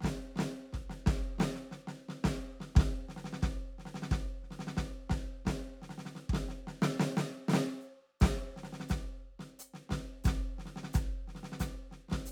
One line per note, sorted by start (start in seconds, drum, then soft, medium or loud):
0.01 kick medium
0.01 snare soft
0.05 snare medium
0.36 snare soft
0.39 snare medium
0.73 kick medium
0.73 snare soft
0.90 snare soft
1.07 kick medium
1.07 snare medium
1.39 snare soft
1.40 snare loud
1.56 snare soft
1.72 snare soft
1.88 snare soft
2.09 snare soft
2.24 kick medium
2.24 snare medium
2.61 snare soft
2.76 kick loud
2.76 snare medium
2.79 snare medium
3.09 snare soft
3.17 snare soft
3.25 snare soft
3.33 snare medium
3.43 kick medium
3.43 snare medium
3.79 snare soft
3.86 snare soft
3.95 snare soft
4.03 snare medium
4.12 kick medium
4.12 snare medium
4.43 snare soft
4.51 snare soft
4.60 snare soft
4.67 snare medium
4.77 kick medium
4.77 snare medium
5.10 kick medium
5.10 snare medium
5.46 kick medium
5.46 snare soft
5.47 snare medium
5.82 snare soft
5.90 snare soft
5.98 snare soft
6.06 snare soft
6.16 snare soft
6.30 kick medium
6.30 snare soft
6.34 snare medium
6.49 snare soft
6.68 snare soft
6.82 snare loud
7.00 snare loud
7.17 snare medium
7.49 snare loud
7.54 snare loud
7.81 hi-hat pedal soft
8.21 kick loud
8.21 snare medium
8.21 hi-hat pedal soft
8.23 snare loud
8.57 snare soft
8.64 snare soft
8.73 snare soft
8.80 snare soft
8.89 kick medium
8.89 snare medium
8.89 hi-hat pedal medium
9.40 snare soft
9.60 hi-hat pedal medium
9.74 snare soft
9.90 kick soft
9.90 snare soft
9.90 snare medium
10.24 kick loud
10.24 snare soft
10.24 hi-hat pedal medium
10.27 snare medium
10.59 snare soft
10.66 snare soft
10.76 snare soft
10.84 snare soft
10.94 kick medium
10.94 snare medium
10.94 hi-hat pedal medium
11.28 snare soft
11.35 snare soft
11.44 snare soft
11.52 snare soft
11.60 kick medium
11.60 snare medium
11.60 hi-hat pedal medium
11.92 snare soft
12.09 snare soft
12.12 kick medium
12.12 snare medium
12.26 hi-hat pedal medium